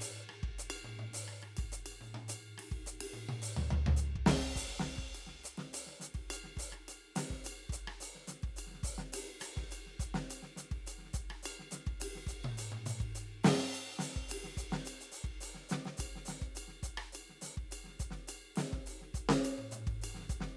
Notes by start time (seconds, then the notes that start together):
0.01 hi-hat pedal, ride bell
0.30 cross-stick
0.43 kick
0.59 hi-hat pedal
0.70 ride bell
0.85 high tom
0.99 high tom
1.14 hi-hat pedal, ride bell
1.28 cross-stick
1.42 cross-stick, ride
1.57 kick, ride bell
1.72 hi-hat pedal
1.86 ride bell
2.01 hi-hat pedal, high tom
2.15 high tom
2.29 hi-hat pedal, ride bell
2.58 cross-stick, ride
2.72 kick
2.87 hi-hat pedal
3.01 ride
3.14 high tom
3.29 high tom
3.42 hi-hat pedal
3.57 floor tom
3.71 floor tom
3.87 floor tom
3.97 hi-hat pedal
4.16 kick
4.26 snare, crash
4.56 kick, hi-hat pedal, ride
4.80 snare, hi-hat pedal
4.96 kick, snare
5.15 hi-hat pedal, ride bell
5.27 snare
5.44 hi-hat pedal, ride
5.58 snare, ride
5.74 hi-hat pedal, ride bell
5.87 snare
6.00 snare, hi-hat pedal, ride
6.15 kick, ride
6.31 hi-hat pedal, ride bell
6.44 snare
6.57 kick, hi-hat pedal, ride
6.73 cross-stick, ride
6.89 hi-hat pedal, ride bell
7.16 snare, hi-hat pedal, ride
7.30 kick, snare
7.45 hi-hat pedal, ride bell
7.70 kick, hi-hat pedal
7.76 ride
7.88 cross-stick
8.01 hi-hat pedal, ride bell
8.15 snare
8.28 snare, hi-hat pedal, ride
8.43 kick, ride
8.57 hi-hat pedal, ride bell
8.67 snare
8.72 snare
8.74 snare
8.77 snare
8.84 kick, hi-hat pedal, ride
8.98 snare, ride
9.13 hi-hat pedal, ride
9.41 cross-stick, hi-hat pedal, ride
9.57 kick, snare
9.71 hi-hat pedal, ride bell
9.87 snare
10.00 kick, hi-hat pedal, ride
10.15 snare, ride
10.30 hi-hat pedal, ride bell
10.43 snare
10.57 snare, hi-hat pedal, ride
10.72 kick, ride
10.87 hi-hat pedal, ride bell
10.99 snare
11.03 snare
11.05 snare
11.14 kick, hi-hat pedal, ride
11.30 cross-stick, ride
11.43 hi-hat pedal, ride bell
11.60 snare
11.71 snare, hi-hat pedal, ride
11.87 kick, ride
12.00 hi-hat pedal, ride
12.16 snare
12.27 kick, hi-hat pedal, ride
12.44 open hi-hat, high tom, ride
12.58 hi-hat pedal, ride bell
12.72 high tom
12.86 hi-hat pedal, high tom, ride
13.00 kick, ride
13.15 hi-hat pedal, ride bell
13.44 snare, hi-hat pedal, crash
13.74 hi-hat pedal, ride
13.99 snare, hi-hat pedal
14.12 kick, snare
14.29 hi-hat pedal, ride
14.44 snare
14.57 kick, hi-hat pedal, ride
14.73 snare, ride
14.85 hi-hat pedal, ride bell
15.01 open hi-hat
15.12 hi-hat pedal, ride
15.24 kick, ride
15.41 hi-hat pedal, ride bell
15.55 snare
15.69 snare, hi-hat pedal, ride bell
15.85 snare, ride
15.98 kick, hi-hat pedal, ride bell
16.16 snare
16.26 snare, hi-hat pedal, ride
16.42 kick, ride
16.55 hi-hat pedal, ride bell
16.68 snare
16.83 kick, hi-hat pedal, ride
16.98 cross-stick, ride
17.13 hi-hat pedal, ride bell
17.30 snare
17.42 snare, hi-hat pedal, ride
17.57 kick, ride
17.72 hi-hat pedal, ride bell
17.84 snare
17.88 snare
18.00 kick, hi-hat pedal, ride
18.11 snare, ride
18.28 hi-hat pedal, ride bell
18.56 snare, hi-hat pedal, ride
18.72 kick, snare
18.86 hi-hat pedal, ride
19.02 snare
19.15 kick, hi-hat pedal, ride
19.29 snare
19.44 hi-hat pedal, ride bell
19.58 high tom
19.72 hi-hat pedal, high tom, ride
19.87 kick, ride
20.02 hi-hat pedal, ride bell
20.15 snare
20.19 snare
20.22 snare
20.30 kick, hi-hat pedal, ride
20.41 snare, ride